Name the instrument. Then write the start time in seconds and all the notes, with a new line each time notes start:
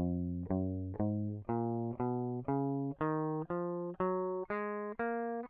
electric guitar
0.00 F2
0.53 F#2
1.02 G#2
1.51 A#2
2.02 B2
2.50 C#3
3.03 D#3
3.52 F3
4.01 F#3
4.51 G#3
5.01 A#3